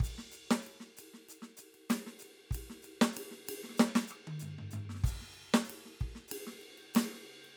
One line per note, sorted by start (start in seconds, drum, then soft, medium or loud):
0.01 kick medium
0.01 hi-hat pedal medium
0.01 ride medium
0.18 snare soft
0.32 hi-hat pedal medium
0.32 ride soft
0.51 snare loud
0.62 hi-hat pedal soft
0.67 ride soft
0.80 snare soft
0.97 hi-hat pedal medium
0.97 ride medium
1.14 snare soft
1.29 hi-hat pedal medium
1.29 ride soft
1.42 snare soft
1.57 hi-hat pedal medium
1.57 ride medium
1.75 ride soft
1.90 snare loud
1.90 hi-hat pedal medium
1.90 ride loud
2.07 snare soft
2.19 hi-hat pedal medium
2.19 ride soft
2.51 kick medium
2.51 hi-hat pedal medium
2.51 ride medium
2.70 snare soft
2.83 hi-hat pedal soft
2.83 ride medium
3.02 snare loud
3.13 hi-hat pedal medium
3.17 ride loud
3.32 snare soft
3.47 hi-hat pedal soft
3.47 ride loud
3.64 snare soft
3.70 snare soft
3.74 snare soft
3.74 hi-hat pedal medium
3.80 snare loud
3.96 snare loud
4.08 cross-stick medium
4.08 hi-hat pedal medium
4.27 high tom medium
4.40 floor tom soft
4.40 hi-hat pedal medium
4.59 floor tom medium
4.71 floor tom medium
4.71 hi-hat pedal medium
4.90 snare soft
4.95 snare soft
4.99 snare soft
5.04 kick medium
5.04 snare soft
5.04 hi-hat pedal medium
5.04 crash medium
5.21 snare soft
5.34 ride soft
5.54 snare loud
5.65 hi-hat pedal medium
5.70 ride medium
5.86 snare soft
6.01 kick medium
6.01 ride soft
6.15 snare soft
6.28 hi-hat pedal medium
6.28 ride loud
6.47 snare soft
6.62 ride soft
6.78 ride soft
6.94 snare loud
6.94 hi-hat pedal medium
6.94 ride loud
7.14 snare soft
7.45 ride soft